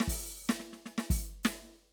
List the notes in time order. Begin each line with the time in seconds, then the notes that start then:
0.00 snare
0.08 open hi-hat, kick
0.47 snare, hi-hat pedal
0.60 snare
0.73 snare
0.86 snare
0.98 snare
1.10 open hi-hat, kick
1.44 snare, hi-hat pedal